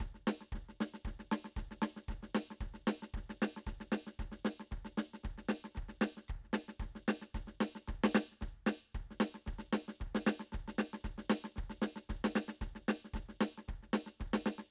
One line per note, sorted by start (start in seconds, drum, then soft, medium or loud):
0.00 kick soft
0.00 snare soft
0.14 snare soft
0.27 snare medium
0.41 snare soft
0.52 kick soft
0.52 snare soft
0.69 snare soft
0.80 snare medium
0.94 snare soft
1.05 kick soft
1.05 snare soft
1.19 snare soft
1.31 snare medium
1.44 snare soft
1.56 kick soft
1.56 snare soft
1.71 snare soft
1.82 snare medium
1.96 snare soft
2.08 kick soft
2.08 snare soft
2.23 snare soft
2.35 snare medium
2.50 snare soft
2.61 kick soft
2.61 snare soft
2.74 snare soft
2.87 snare medium
3.02 snare soft
3.14 kick soft
3.14 snare soft
3.29 snare soft
3.42 snare medium
3.56 snare soft
3.66 kick soft
3.66 snare soft
3.80 snare soft
3.92 snare medium
4.07 snare soft
4.19 kick soft
4.19 snare soft
4.32 snare soft
4.45 snare medium
4.60 snare soft
4.71 kick soft
4.71 snare soft
4.85 snare soft
4.97 snare medium
5.13 snare soft
5.25 kick soft
5.38 snare soft
5.49 snare medium
5.64 snare soft
5.75 kick soft
5.75 snare soft
5.88 snare soft
6.01 snare medium
6.17 snare soft
6.28 kick soft
6.28 cross-stick soft
6.44 snare soft
6.53 snare medium
6.68 snare soft
6.79 kick soft
6.79 snare soft
6.95 snare soft
7.08 snare medium
7.21 snare soft
7.34 kick soft
7.34 snare soft
7.47 snare soft
7.60 snare medium
7.75 snare soft
7.88 kick soft
7.88 snare soft
8.04 snare loud
8.15 snare loud
8.31 snare soft
8.41 kick soft
8.41 snare soft
8.66 snare medium
8.95 kick soft
8.95 snare soft
9.11 snare soft
9.20 snare medium
9.34 snare soft
9.46 kick soft
9.46 snare soft
9.58 snare soft
9.73 snare medium
9.88 snare soft
10.00 kick soft
10.00 snare soft
10.15 snare medium
10.26 snare medium
10.39 snare soft
10.52 kick soft
10.52 snare soft
10.68 snare soft
10.78 snare medium
10.93 snare soft
11.04 kick soft
11.04 snare soft
11.18 snare soft
11.30 snare medium
11.44 snare soft
11.56 kick soft
11.56 snare soft
11.70 snare soft
11.82 snare medium
11.96 snare soft
12.09 kick soft
12.09 snare soft
12.24 snare medium
12.35 snare medium
12.48 snare soft
12.61 kick soft
12.61 snare soft
12.75 snare soft
12.88 snare medium
13.04 snare soft
13.13 kick soft
13.13 snare soft
13.29 snare soft
13.41 snare medium
13.58 snare soft
13.68 kick soft
13.68 snare soft
13.83 snare soft
13.93 snare medium
14.06 snare soft
14.20 kick soft
14.20 snare soft
14.33 snare medium
14.46 snare medium
14.58 snare soft